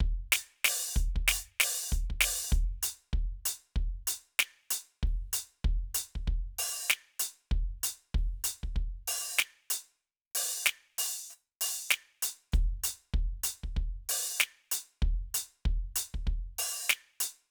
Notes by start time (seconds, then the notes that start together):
0.01 kick
0.33 closed hi-hat, snare
0.65 open hi-hat, snare
0.96 kick, hi-hat pedal
1.17 kick
1.29 open hi-hat, snare
1.61 open hi-hat, snare
1.92 kick, hi-hat pedal
2.11 kick
2.21 open hi-hat, snare
2.50 kick, hi-hat pedal
2.83 closed hi-hat
3.14 kick
3.46 closed hi-hat
3.77 kick
4.08 closed hi-hat
4.40 snare
4.71 closed hi-hat
5.04 kick
5.08 crash
5.34 closed hi-hat
5.65 kick
5.95 closed hi-hat
6.16 kick
6.28 kick
6.59 open hi-hat
6.89 snare, hi-hat pedal
7.20 closed hi-hat
7.52 kick
7.84 closed hi-hat
8.15 kick
8.19 crash
8.45 closed hi-hat
8.64 kick
8.77 kick
9.08 open hi-hat
9.38 snare, hi-hat pedal
9.71 closed hi-hat
10.36 open hi-hat
10.66 snare, hi-hat pedal
10.99 open hi-hat
11.31 hi-hat pedal
11.62 open hi-hat
11.90 snare, hi-hat pedal
12.23 open hi-hat
12.53 kick, hi-hat pedal
12.84 closed hi-hat
13.14 kick
13.44 closed hi-hat
13.64 kick
13.77 kick
14.10 open hi-hat
14.40 snare, hi-hat pedal
14.72 closed hi-hat
15.03 kick
15.35 closed hi-hat
15.66 kick
15.96 closed hi-hat
16.15 kick
16.28 kick
16.59 open hi-hat
16.90 snare, hi-hat pedal
17.21 closed hi-hat